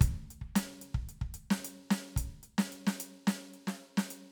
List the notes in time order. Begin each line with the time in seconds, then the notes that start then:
0.01 kick, closed hi-hat
0.31 closed hi-hat
0.41 kick
0.56 snare, closed hi-hat
0.82 closed hi-hat
0.95 kick
1.09 closed hi-hat
1.21 kick
1.34 closed hi-hat
1.51 snare
1.65 closed hi-hat
1.91 snare
2.16 kick, closed hi-hat
2.43 closed hi-hat
2.58 snare
2.72 closed hi-hat
2.87 snare
3.00 closed hi-hat
3.27 snare
3.54 closed hi-hat
3.67 snare
3.97 snare
4.11 closed hi-hat